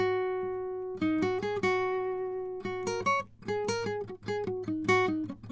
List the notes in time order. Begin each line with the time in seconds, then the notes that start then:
0.01 F#4
1.02 D#4
1.23 F#4
1.44 G#4
1.64 F#4
2.66 F#4
2.88 A#4
3.07 C#5
3.49 G#4
3.69 A#4
3.87 G#4
4.09 F#4
4.29 G#4
4.48 F#4
4.69 D#4
4.89 F#4
5.09 D#4